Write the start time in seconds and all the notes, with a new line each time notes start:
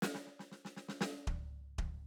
0.02 snare, hi-hat pedal
0.15 snare
0.27 snare
0.40 snare
0.52 snare
0.65 snare
0.77 snare
0.89 snare
1.01 snare
1.27 kick, floor tom
1.79 kick, floor tom